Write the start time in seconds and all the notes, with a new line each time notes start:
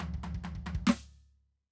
0.01 floor tom, high tom
0.14 kick
0.24 floor tom, high tom
0.35 kick
0.44 floor tom, high tom
0.56 kick
0.67 floor tom, high tom
0.75 kick
0.87 snare
0.89 snare